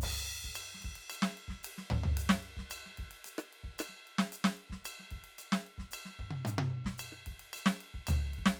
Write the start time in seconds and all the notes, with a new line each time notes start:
0.01 kick, hi-hat pedal, crash
0.09 kick
0.44 kick, snare
0.54 hi-hat pedal, ride bell
0.74 snare
0.81 snare, ride
0.83 kick, snare
0.90 kick
0.96 ride
1.10 hi-hat pedal, ride bell
1.22 snare
1.28 snare
1.37 ride
1.48 kick, snare
1.54 kick
1.63 hi-hat pedal, ride
1.78 snare
1.90 kick, floor tom
2.04 floor tom
2.17 hi-hat pedal, ride
2.29 snare
2.43 ride
2.57 kick, snare
2.70 hi-hat pedal, ride bell
2.86 snare
2.98 kick, ride
3.07 snare
3.11 ride
3.25 hi-hat pedal, ride
3.38 cross-stick
3.53 ride
3.64 kick
3.78 cross-stick, hi-hat pedal, ride bell
3.89 snare
4.07 ride
4.19 snare
4.32 hi-hat pedal, ride
4.44 snare
4.56 hi-hat pedal, ride
4.70 kick, snare
4.85 hi-hat pedal, ride bell
5.00 snare
5.09 kick, snare, ride
5.13 snare
5.15 kick, snare
5.17 snare
5.24 ride
5.38 hi-hat pedal, ride bell
5.52 snare
5.67 ride
5.78 kick, snare
5.91 hi-hat pedal, ride bell
6.05 snare
6.19 kick, mid tom
6.25 kick
6.31 high tom
6.45 hi-hat pedal, mid tom
6.58 high tom
6.70 mid tom
6.84 kick, snare
6.98 hi-hat pedal, ride bell
7.12 cross-stick
7.26 kick, ride
7.40 ride
7.53 hi-hat pedal, ride bell
7.66 snare
7.81 ride
7.94 kick
8.07 floor tom, hi-hat pedal, ride bell
8.34 ride
8.38 kick
8.44 kick, snare